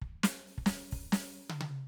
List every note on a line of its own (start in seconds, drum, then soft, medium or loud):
0.01 kick soft
0.23 closed hi-hat loud
0.23 snare loud
0.47 open hi-hat soft
0.58 kick soft
0.66 open hi-hat medium
0.66 snare loud
0.91 open hi-hat medium
0.91 kick medium
1.12 open hi-hat medium
1.12 snare loud
1.50 high tom loud
1.61 high tom loud